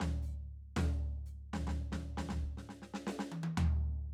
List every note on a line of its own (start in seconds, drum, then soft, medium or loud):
0.00 snare medium
0.00 floor tom loud
0.22 hi-hat pedal soft
0.76 snare medium
0.76 floor tom loud
1.26 hi-hat pedal soft
1.53 snare medium
1.53 floor tom medium
1.67 snare medium
1.67 floor tom medium
1.92 snare medium
1.92 floor tom medium
2.17 snare medium
2.17 floor tom medium
2.29 snare medium
2.29 floor tom medium
2.41 kick soft
2.57 snare soft
2.69 snare soft
2.82 snare soft
2.94 snare medium
3.07 snare medium
3.19 snare medium
3.32 closed hi-hat soft
3.32 high tom medium
3.43 high tom medium
3.57 floor tom loud